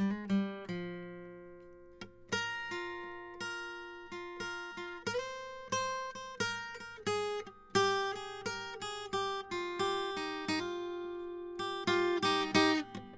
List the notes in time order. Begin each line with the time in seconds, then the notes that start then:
0.00 G#3
0.31 G3
0.70 F3
2.34 A#4
2.73 F4
3.42 A#4
4.13 F4
4.41 A#4
4.79 F4
5.08 A#4
5.19 C5
5.73 C5
6.17 C5
6.41 A#4
6.76 A#4
7.08 G#4
7.76 G4
8.13 G#4
8.47 A#4
8.83 G#4
9.14 G4
9.53 F4
9.80 G4
10.18 D#4
10.50 D#4
10.61 F4
11.60 G4
11.88 F4 G4
12.24 D#4 G4
12.56 D#4 G4